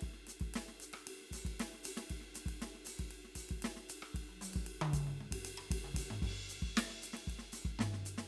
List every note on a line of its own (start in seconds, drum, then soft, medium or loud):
0.01 kick soft
0.01 ride medium
0.13 snare soft
0.27 snare soft
0.27 hi-hat pedal loud
0.27 ride medium
0.40 kick soft
0.40 ride soft
0.54 snare medium
0.54 ride medium
0.68 snare soft
0.80 hi-hat pedal loud
0.80 ride medium
0.93 cross-stick medium
0.93 ride medium
1.07 hi-hat pedal soft
1.07 ride medium
1.21 snare soft
1.31 kick soft
1.31 snare soft
1.31 hi-hat pedal medium
1.31 ride medium
1.45 kick soft
1.45 ride medium
1.57 snare medium
1.57 hi-hat pedal soft
1.57 ride medium
1.74 snare soft
1.84 hi-hat pedal loud
1.84 ride loud
1.97 snare medium
1.97 ride medium
2.09 kick soft
2.09 hi-hat pedal soft
2.09 ride medium
2.21 snare soft
2.35 snare soft
2.35 hi-hat pedal loud
2.35 ride medium
2.46 kick soft
2.46 ride medium
2.59 snare medium
2.59 hi-hat pedal soft
2.59 ride medium
2.75 snare soft
2.85 snare soft
2.85 hi-hat pedal loud
2.85 ride medium
2.99 kick soft
2.99 ride medium
3.11 ride medium
3.25 snare soft
3.35 kick soft
3.35 hi-hat pedal medium
3.35 ride medium
3.49 kick soft
3.49 ride medium
3.62 snare medium
3.62 ride medium
3.77 snare soft
3.89 hi-hat pedal loud
3.89 ride medium
4.02 cross-stick medium
4.15 kick soft
4.15 ride medium
4.29 high tom soft
4.41 hi-hat pedal loud
4.41 high tom medium
4.54 kick soft
4.54 ride medium
4.67 ride medium
4.81 mid tom loud
4.93 kick soft
4.93 hi-hat pedal loud
4.93 ride medium
5.07 floor tom soft
5.21 floor tom soft
5.31 kick soft
5.31 ride loud
5.45 hi-hat pedal medium
5.45 ride loud
5.58 floor tom medium
5.71 kick medium
5.71 ride loud
5.84 mid tom soft
5.95 kick soft
5.95 hi-hat pedal medium
5.95 ride loud
6.10 floor tom medium
6.22 kick medium
6.22 ride medium
6.49 hi-hat pedal loud
6.49 ride medium
6.62 kick soft
6.76 snare loud
6.76 ride medium
6.90 snare soft
7.02 hi-hat pedal loud
7.02 ride medium
7.13 snare medium
7.13 ride medium
7.27 kick soft
7.27 hi-hat pedal soft
7.27 ride medium
7.39 snare soft
7.52 snare soft
7.52 hi-hat pedal loud
7.52 ride medium
7.65 kick soft
7.78 snare medium
7.78 floor tom medium
7.78 hi-hat pedal soft
7.94 snare soft
8.03 kick soft
8.03 hi-hat pedal loud
8.03 ride medium
8.18 snare medium